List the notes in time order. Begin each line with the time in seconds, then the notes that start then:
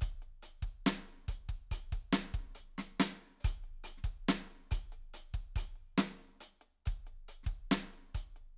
0.01 closed hi-hat, kick
0.22 closed hi-hat
0.43 closed hi-hat
0.62 kick, closed hi-hat
0.86 closed hi-hat, snare
1.07 closed hi-hat
1.28 closed hi-hat, kick
1.49 kick, closed hi-hat
1.71 closed hi-hat, kick
1.92 kick, closed hi-hat
2.13 closed hi-hat, snare
2.34 kick, closed hi-hat
2.55 closed hi-hat
2.78 closed hi-hat, snare
3.00 closed hi-hat, snare
3.40 hi-hat pedal
3.44 closed hi-hat, kick
3.64 closed hi-hat
3.84 closed hi-hat
3.98 snare
4.04 kick, closed hi-hat
4.28 closed hi-hat, snare
4.47 closed hi-hat
4.71 closed hi-hat, kick
4.92 closed hi-hat
5.14 closed hi-hat
5.34 kick, closed hi-hat
5.56 closed hi-hat, kick
5.61 snare
5.76 closed hi-hat
5.98 closed hi-hat, snare
6.20 closed hi-hat
6.41 closed hi-hat
6.61 closed hi-hat
6.86 closed hi-hat, kick
7.07 closed hi-hat
7.28 closed hi-hat
7.43 kick, snare
7.49 closed hi-hat
7.71 closed hi-hat, snare
7.93 closed hi-hat
8.15 closed hi-hat, kick
8.36 closed hi-hat